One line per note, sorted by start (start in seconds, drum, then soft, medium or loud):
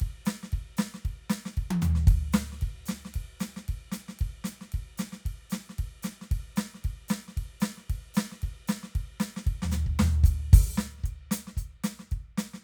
0.01 kick soft
0.01 ride soft
0.26 snare medium
0.26 hi-hat pedal medium
0.26 ride medium
0.44 snare soft
0.53 kick soft
0.53 ride soft
0.78 snare medium
0.78 hi-hat pedal medium
0.78 ride soft
0.95 snare soft
1.06 kick soft
1.06 ride soft
1.31 snare medium
1.31 hi-hat pedal medium
1.31 ride medium
1.46 snare medium
1.58 kick soft
1.58 ride soft
1.71 high tom loud
1.83 floor tom loud
1.83 hi-hat pedal medium
1.96 snare soft
2.08 kick loud
2.08 ride medium
2.33 snare loud
2.33 hi-hat pedal medium
2.33 ride medium
2.53 snare soft
2.62 kick soft
2.62 ride soft
2.87 snare medium
2.87 hi-hat pedal medium
2.87 ride medium
3.06 snare soft
3.15 kick soft
3.15 ride medium
3.41 snare medium
3.41 hi-hat pedal medium
3.41 ride medium
3.57 snare soft
3.69 kick soft
3.69 ride soft
3.93 snare medium
3.93 hi-hat pedal medium
3.93 ride soft
4.09 snare soft
4.20 kick medium
4.20 ride soft
4.45 snare medium
4.45 hi-hat pedal medium
4.45 ride medium
4.62 snare soft
4.73 kick soft
4.73 ride soft
4.98 snare medium
4.98 hi-hat pedal medium
4.98 ride soft
5.13 snare soft
5.26 kick soft
5.26 ride soft
5.51 snare medium
5.51 hi-hat pedal medium
5.51 ride medium
5.70 snare soft
5.79 kick soft
5.79 ride soft
6.03 snare medium
6.03 hi-hat pedal medium
6.03 ride medium
6.22 snare soft
6.32 kick medium
6.32 ride medium
6.57 snare medium
6.57 hi-hat pedal medium
6.57 ride medium
6.75 snare soft
6.85 kick soft
6.85 ride soft
7.09 snare medium
7.09 hi-hat pedal medium
7.09 ride medium
7.29 snare soft
7.38 kick soft
7.38 ride soft
7.61 snare medium
7.61 hi-hat pedal medium
7.61 ride medium
7.78 snare soft
7.90 kick soft
7.90 ride medium
8.15 snare loud
8.15 hi-hat pedal medium
8.15 ride medium
8.32 snare soft
8.43 kick soft
8.43 ride soft
8.68 snare medium
8.68 hi-hat pedal medium
8.68 ride medium
8.84 snare soft
8.96 kick soft
8.96 ride soft
9.21 snare medium
9.21 hi-hat pedal medium
9.21 ride medium
9.37 snare medium
9.47 kick medium
9.47 ride soft
9.63 snare medium
9.63 floor tom medium
9.72 snare medium
9.72 floor tom medium
9.72 hi-hat pedal medium
9.87 kick soft
10.00 snare loud
10.00 floor tom loud
10.24 kick medium
10.24 hi-hat pedal medium
10.24 ride medium
10.54 open hi-hat medium
10.54 kick loud
10.78 open hi-hat medium
10.78 snare medium
10.78 hi-hat pedal soft
10.99 snare soft
11.04 kick soft
11.04 closed hi-hat soft
11.32 closed hi-hat loud
11.32 snare medium
11.48 snare soft
11.58 closed hi-hat soft
11.58 kick soft
11.84 closed hi-hat medium
11.84 snare medium
12.00 snare soft
12.12 kick soft
12.12 closed hi-hat soft
12.38 closed hi-hat medium
12.38 snare medium
12.54 snare soft